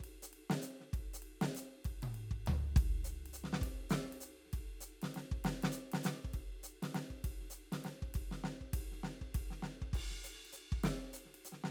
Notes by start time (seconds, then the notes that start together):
0.01 kick, ride
0.23 hi-hat pedal
0.34 ride
0.51 snare, ride
0.62 hi-hat pedal, ride
0.81 snare
0.94 kick, ride
1.14 hi-hat pedal
1.23 ride
1.42 snare, ride
1.56 hi-hat pedal, ride
1.85 kick, ride
2.03 high tom, ride
2.15 ride
2.32 kick
2.47 floor tom, ride
2.77 kick, ride
3.05 hi-hat pedal, ride
3.27 ride
3.34 hi-hat pedal, ride
3.45 snare
3.54 snare
3.62 kick, ride
3.90 snare, hi-hat pedal, ride
4.13 ride
4.21 hi-hat pedal, ride
4.46 snare
4.54 kick, ride
4.81 hi-hat pedal, ride
5.03 snare, ride
5.15 snare, ride
5.32 kick
5.45 snare, ride
5.63 snare, ride
5.73 hi-hat pedal
5.92 snare, ride
6.04 snare, hi-hat pedal, ride
6.25 kick
6.34 kick, ride
6.64 hi-hat pedal, ride
6.83 snare, ride
6.95 snare, ride
7.11 kick
7.25 kick, ride
7.41 snare
7.51 hi-hat pedal
7.55 ride
7.73 snare, ride
7.85 snare, ride
8.03 kick
8.15 kick, ride
8.32 snare
8.45 snare
8.62 kick
8.74 kick, ride
8.92 snare
9.04 snare
9.22 kick
9.35 kick, ride
9.51 snare
9.63 snare
9.82 kick
9.94 kick, crash
10.11 snare
10.25 hi-hat pedal, ride
10.35 cross-stick
10.46 ride
10.53 hi-hat pedal, ride
10.73 kick
10.84 snare, ride
11.14 hi-hat pedal, ride
11.26 snare
11.35 ride
11.46 hi-hat pedal, ride
11.53 snare
11.64 snare